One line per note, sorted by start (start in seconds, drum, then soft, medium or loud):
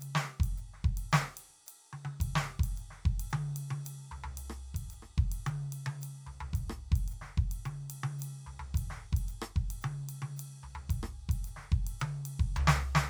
0.01 hi-hat pedal medium
0.01 ride medium
0.16 snare medium
0.41 kick medium
0.41 ride medium
0.58 hi-hat pedal medium
0.74 snare soft
0.85 kick medium
0.98 ride medium
1.12 snare loud
1.12 hi-hat pedal medium
1.38 ride medium
1.67 hi-hat pedal medium
1.67 ride medium
1.94 high tom medium
2.06 high tom medium
2.21 kick medium
2.21 hi-hat pedal medium
2.21 ride medium
2.36 snare medium
2.60 kick medium
2.64 ride medium
2.77 hi-hat pedal medium
2.77 ride soft
2.91 snare soft
3.06 kick medium
3.20 ride medium
3.31 hi-hat pedal medium
3.31 high tom loud
3.57 ride medium
3.71 high tom loud
3.86 hi-hat pedal medium
3.86 ride medium
4.12 floor tom medium
4.25 floor tom medium
4.38 hi-hat pedal medium
4.38 ride medium
4.51 cross-stick medium
4.75 kick soft
4.75 ride medium
4.91 hi-hat pedal medium
4.91 ride soft
5.03 cross-stick soft
5.19 kick medium
5.32 ride medium
5.47 hi-hat pedal medium
5.47 high tom loud
5.73 ride medium
5.87 high tom medium
6.02 hi-hat pedal medium
6.02 ride medium
6.27 floor tom medium
6.41 floor tom medium
6.54 kick medium
6.54 hi-hat pedal medium
6.54 ride medium
6.70 cross-stick medium
6.92 kick medium
6.92 ride medium
7.09 hi-hat pedal medium
7.09 ride soft
7.22 snare soft
7.38 kick medium
7.52 ride medium
7.66 hi-hat pedal medium
7.66 high tom medium
7.91 ride medium
8.04 high tom loud
8.20 hi-hat pedal medium
8.20 ride medium
8.47 floor tom medium
8.60 floor tom medium
8.75 kick medium
8.75 hi-hat pedal medium
8.75 ride medium
8.91 snare soft
9.13 kick medium
9.13 ride medium
9.29 hi-hat pedal medium
9.29 ride soft
9.42 cross-stick medium
9.57 kick medium
9.71 ride medium
9.82 hi-hat pedal medium
9.82 high tom loud
10.10 ride medium
10.23 high tom medium
10.37 hi-hat pedal medium
10.37 ride medium
10.64 floor tom soft
10.76 floor tom medium
10.90 kick medium
10.90 hi-hat pedal medium
10.90 ride medium
11.04 cross-stick medium
11.30 kick medium
11.30 ride medium
11.45 hi-hat pedal medium
11.45 ride medium
11.57 snare soft
11.72 kick medium
11.87 ride medium
12.00 hi-hat pedal medium
12.00 high tom loud
12.26 ride medium
12.40 kick medium
12.56 floor tom loud
12.56 hi-hat pedal medium
12.68 snare loud
12.81 hi-hat pedal soft
12.96 snare loud